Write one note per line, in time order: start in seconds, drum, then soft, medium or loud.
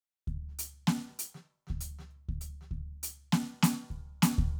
0.27 kick medium
0.27 closed hi-hat soft
0.49 snare soft
0.59 closed hi-hat loud
0.87 snare loud
1.07 snare soft
1.19 closed hi-hat loud
1.34 snare soft
1.67 kick medium
1.67 snare soft
1.81 closed hi-hat medium
1.99 snare soft
2.11 closed hi-hat soft
2.29 kick medium
2.29 snare soft
2.41 closed hi-hat medium
2.61 snare soft
2.71 kick medium
2.71 closed hi-hat soft
3.03 closed hi-hat loud
3.32 closed hi-hat medium
3.32 snare loud
3.63 closed hi-hat loud
3.63 snare loud
3.90 kick medium
3.90 closed hi-hat soft
4.22 closed hi-hat loud
4.22 snare loud
4.38 kick loud